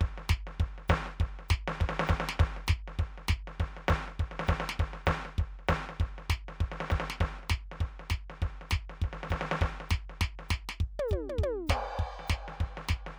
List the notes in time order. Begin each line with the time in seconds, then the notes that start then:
0.01 kick, snare
0.18 snare
0.29 kick, snare, hi-hat pedal
0.47 snare
0.60 kick, snare
0.78 snare
0.88 kick, snare, hi-hat pedal
1.06 snare
1.20 kick, snare
1.39 snare
1.49 kick, snare, hi-hat pedal
1.68 snare
1.81 kick, snare
1.89 snare
2.00 snare
2.07 kick, snare, hi-hat pedal
2.20 snare
2.29 snare
2.40 kick, snare
2.57 snare
2.67 kick, snare, hi-hat pedal
2.88 snare
2.99 kick, snare
3.18 snare
3.28 kick, snare, hi-hat pedal
3.48 snare
3.60 kick, snare
3.77 snare
3.88 kick, snare, hi-hat pedal
4.08 snare
4.20 kick, snare
4.32 snare
4.40 snare
4.47 kick, snare, hi-hat pedal
4.60 snare
4.69 snare
4.80 kick, snare
4.94 snare
5.06 kick, snare, hi-hat pedal
5.25 snare
5.38 kick, snare
5.59 snare
5.68 kick, snare, hi-hat pedal
5.89 snare
6.00 kick, snare
6.18 snare
6.30 kick, snare, hi-hat pedal
6.49 snare
6.61 kick, snare
6.72 snare
6.81 snare
6.90 kick, snare, hi-hat pedal
7.00 snare
7.10 snare
7.21 kick, snare
7.39 snare
7.43 snare
7.49 kick, snare, hi-hat pedal
7.72 snare
7.81 kick, snare
8.00 snare
8.10 kick, snare, hi-hat pedal
8.30 snare
8.42 kick, snare
8.61 snare
8.70 kick, snare, hi-hat pedal
8.90 snare
9.02 kick, snare
9.13 snare
9.23 snare
9.30 kick, snare, hi-hat pedal
9.41 snare
9.52 snare
9.61 kick, snare
9.80 snare
9.89 kick, snare, hi-hat pedal
10.10 snare
10.21 kick, snare
10.39 snare
10.49 kick, snare, hi-hat pedal
10.69 snare
10.80 kick
10.99 high tom
11.08 kick, hi-hat pedal
11.13 high tom
11.29 high tom
11.39 kick
11.43 high tom
11.67 kick, snare, hi-hat pedal, crash
11.99 kick
12.20 snare
12.27 kick, snare, hi-hat pedal
12.48 snare
12.61 kick, snare
12.77 snare
12.88 kick, snare, hi-hat pedal
13.07 snare